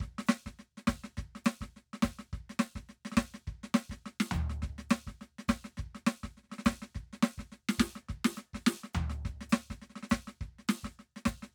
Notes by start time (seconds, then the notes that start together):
0.01 kick, snare
0.08 kick
0.19 snare
0.27 snare, hi-hat pedal
0.47 kick, snare
0.60 snare
0.78 snare
0.88 kick, snare, hi-hat pedal
0.95 kick
0.98 kick
1.04 snare
1.18 kick, snare
1.25 kick
1.36 snare
1.45 snare, hi-hat pedal
1.62 kick, snare
1.77 snare
1.94 snare
2.03 kick, snare, hi-hat pedal
2.11 kick
2.19 snare
2.34 kick, snare
2.41 kick
2.50 snare
2.60 snare, hi-hat pedal
2.76 kick, snare
2.90 snare
3.06 snare
3.12 snare
3.18 kick, snare, hi-hat pedal
3.35 snare
3.48 kick, snare
3.55 kick
3.64 snare
3.75 snare, hi-hat pedal
3.90 kick, snare
4.06 snare
4.21 snare
4.32 kick, floor tom, hi-hat pedal
4.41 kick
4.44 kick
4.50 snare
4.63 kick, snare
4.70 kick
4.79 snare
4.90 snare, hi-hat pedal
5.07 kick, snare
5.22 snare
5.39 snare
5.49 kick, snare, hi-hat pedal
5.58 kick
5.65 snare
5.78 kick, snare
5.87 kick
5.95 snare
6.07 snare, hi-hat pedal
6.24 kick, snare
6.38 snare
6.44 snare
6.50 snare
6.52 snare
6.59 snare
6.66 kick, snare, hi-hat pedal
6.72 kick, snare
6.75 kick
6.83 snare
6.95 kick, snare
7.14 snare
7.23 snare, hi-hat pedal
7.38 kick, snare
7.53 snare
7.69 snare
7.79 kick, snare, hi-hat pedal
7.96 snare
8.09 kick, snare
8.17 kick
8.25 snare
8.36 snare, hi-hat pedal
8.54 kick, snare
8.67 snare
8.84 snare
8.94 kick, floor tom, hi-hat pedal
9.07 kick, snare
9.26 kick, snare
9.32 kick
9.42 snare
9.50 snare, hi-hat pedal
9.71 kick, snare
9.82 snare
9.90 snare
9.96 snare
10.03 snare
10.10 kick, snare, hi-hat pedal
10.28 snare
10.42 kick, snare
10.48 kick
10.59 snare
10.69 snare, hi-hat pedal
10.84 kick, snare
11.00 snare
11.17 snare
11.26 kick, snare, hi-hat pedal
11.34 kick
11.37 kick
11.43 snare